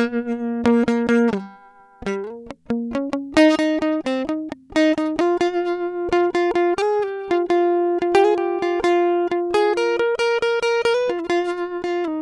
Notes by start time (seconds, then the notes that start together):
0.01 A#3
0.68 A#3
0.90 A#3
1.11 A#3
1.31 G3
2.08 G3
2.26 A#3
2.72 A#3
2.97 C#4
3.15 C#4
3.39 D#4
3.61 D#4
3.84 D#4
4.08 C4
4.31 D#4
4.78 D#4
5.00 D#4
5.21 F4
5.43 F4
6.15 F4
6.37 F4
6.58 F4
6.80 G#4
7.06 G4
7.33 F4
7.52 F4
8.04 F4
8.17 G4
8.26 G#4
8.40 G4
8.64 F4
8.86 F4
9.34 F4
9.56 G#4
9.79 A#4
10.02 A#4
10.21 A#4
10.45 A#4
10.65 A#4
10.88 A#4
10.97 B4
11.12 F4
11.32 F4
11.86 F4
12.06 D#4